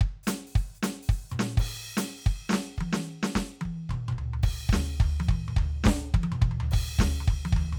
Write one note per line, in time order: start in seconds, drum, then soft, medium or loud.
0.02 kick loud
0.23 snare loud
0.23 hi-hat pedal medium
0.27 closed hi-hat loud
0.47 open hi-hat medium
0.55 open hi-hat medium
0.55 kick loud
0.75 hi-hat pedal soft
0.83 closed hi-hat loud
0.83 snare loud
1.02 open hi-hat medium
1.09 open hi-hat medium
1.09 kick loud
1.29 hi-hat pedal medium
1.29 mid tom loud
1.39 snare loud
1.57 kick loud
1.57 crash loud
1.90 hi-hat pedal soft
1.97 closed hi-hat loud
1.97 snare loud
2.16 open hi-hat soft
2.24 open hi-hat medium
2.24 kick loud
2.45 hi-hat pedal soft
2.49 snare loud
2.53 snare loud
2.76 kick medium
2.76 hi-hat pedal soft
2.81 high tom loud
2.93 snare loud
3.23 snare loud
3.29 hi-hat pedal soft
3.35 kick medium
3.35 snare loud
3.61 hi-hat pedal soft
3.61 high tom loud
3.65 kick soft
3.89 kick medium
3.89 mid tom loud
4.08 mid tom loud
4.12 kick soft
4.18 floor tom loud
4.33 floor tom medium
4.43 kick loud
4.43 crash loud
4.68 kick loud
4.68 hi-hat pedal soft
4.73 snare loud
4.73 floor tom loud
5.00 kick loud
5.00 floor tom loud
5.20 hi-hat pedal soft
5.20 high tom loud
5.28 kick loud
5.28 mid tom loud
5.48 mid tom loud
5.56 kick loud
5.56 floor tom loud
5.84 kick loud
5.84 snare loud
5.84 hi-hat pedal soft
5.87 snare loud
6.14 kick loud
6.14 high tom loud
6.23 high tom loud
6.32 mid tom loud
6.42 kick loud
6.42 mid tom loud
6.51 floor tom medium
6.60 floor tom loud
6.71 kick loud
6.71 crash loud
6.97 kick loud
6.97 snare loud
6.97 hi-hat pedal soft
7.01 floor tom loud
7.20 floor tom medium
7.28 kick loud
7.28 floor tom medium
7.45 hi-hat pedal soft
7.45 high tom loud
7.53 kick loud
7.53 floor tom loud
7.73 mid tom loud